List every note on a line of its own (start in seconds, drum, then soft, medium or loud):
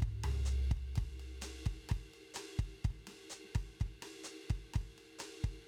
0.01 kick soft
0.01 ride soft
0.08 kick soft
0.24 floor tom loud
0.24 ride medium
0.46 hi-hat pedal medium
0.46 ride soft
0.72 kick soft
0.72 ride soft
0.77 kick soft
0.96 kick soft
0.96 snare soft
0.96 ride medium
1.03 kick soft
1.20 ride soft
1.42 snare soft
1.42 hi-hat pedal medium
1.42 ride medium
1.66 kick soft
1.66 ride soft
1.89 kick soft
1.89 cross-stick soft
1.89 snare soft
1.89 ride medium
1.97 kick soft
2.14 ride soft
2.34 cross-stick soft
2.34 snare soft
2.34 hi-hat pedal medium
2.34 ride medium
2.59 kick soft
2.59 ride soft
2.85 kick soft
2.85 ride soft
2.91 kick soft
3.08 snare soft
3.08 ride medium
3.30 hi-hat pedal medium
3.30 ride soft
3.44 snare soft
3.55 kick soft
3.55 cross-stick soft
3.55 snare soft
3.55 ride medium
3.81 kick soft
3.81 ride soft
3.86 kick soft
4.02 cross-stick soft
4.02 snare soft
4.02 ride medium
4.24 hi-hat pedal medium
4.24 ride soft
4.50 kick soft
4.50 ride soft
4.74 kick soft
4.74 cross-stick soft
4.74 snare soft
4.74 ride medium
4.81 kick soft
4.98 ride soft
5.19 cross-stick soft
5.19 snare soft
5.19 hi-hat pedal medium
5.19 ride medium
5.44 kick soft
5.44 ride soft